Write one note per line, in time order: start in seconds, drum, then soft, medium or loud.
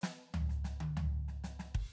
0.01 snare medium
0.01 hi-hat pedal soft
0.21 snare soft
0.34 floor tom loud
0.49 snare soft
0.49 hi-hat pedal soft
0.64 snare soft
0.80 closed hi-hat soft
0.80 high tom medium
0.97 floor tom medium
1.28 snare soft
1.44 snare soft
1.44 hi-hat pedal medium
1.59 snare soft
1.75 kick soft
1.75 crash soft